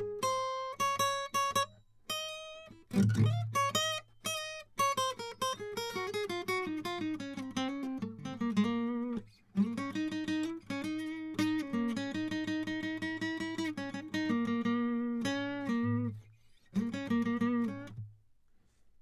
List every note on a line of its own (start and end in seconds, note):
0.01 0.23 G#4
0.24 0.77 C5
0.81 0.99 C#5
1.01 1.31 C#5
1.36 1.53 C#5
1.57 1.65 C#5
1.65 1.84 D#5
2.11 2.72 D#5
2.99 3.08 A2
2.99 3.09 D3
3.19 3.88 A2
3.19 3.35 D3
3.32 3.46 F5
3.57 3.73 C#5
3.76 4.03 D#5
4.28 4.65 D#5
4.81 4.97 C#5
4.99 5.16 C5
5.21 5.37 A#4
5.43 5.59 C5
5.61 5.80 G#4
5.79 5.93 A#4
5.98 6.13 F#4
6.16 6.29 G#4
6.31 6.45 F4
6.50 6.71 F#4
6.68 6.85 D#4
6.87 7.07 F4
7.03 7.19 D#4
7.22 7.39 C#4
7.39 7.54 C4
7.58 7.70 C4
7.71 7.85 C#4
7.85 8.03 C4
8.21 8.40 D3
8.27 8.40 C4
8.43 8.56 A#3
8.58 8.66 G#3
8.67 8.90 A#3
9.59 9.80 A#3
9.79 9.93 C#4
9.97 10.11 D#4
10.14 10.27 D#4
10.30 10.46 D#4
10.47 10.63 E4
10.72 10.85 C#4
10.86 11.38 D#4
11.40 11.61 D#4
11.61 11.95 C#4
11.75 12.01 A#3
11.98 12.15 C#4
12.17 12.33 D#4
12.33 12.48 D#4
12.50 12.67 D#4
12.69 12.84 D#4
12.85 13.02 D#4
13.04 13.21 D#4
13.23 13.39 E4
13.39 13.58 E4
13.60 13.75 D#4
13.79 13.93 C#4
13.96 14.04 C#4
14.16 14.37 D#4
14.31 14.47 A#3
14.47 14.67 A#3
14.67 15.30 A#3
15.27 15.77 C#4
15.71 16.12 A#3
16.78 16.95 A#3
16.96 17.16 C#4
17.13 17.25 A#3
17.28 17.39 A#3
17.43 17.72 B3
17.70 17.94 C#4